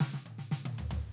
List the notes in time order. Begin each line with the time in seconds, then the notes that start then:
0.00 snare
0.14 snare
0.26 high tom
0.38 snare
0.51 snare
0.65 high tom
0.78 floor tom
0.91 floor tom